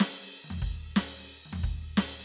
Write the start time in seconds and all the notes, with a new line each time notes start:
0.00 snare, crash
0.44 high tom
0.51 floor tom
0.62 kick
0.96 snare, crash
1.46 high tom
1.53 floor tom
1.64 kick
1.98 snare, crash
2.05 cross-stick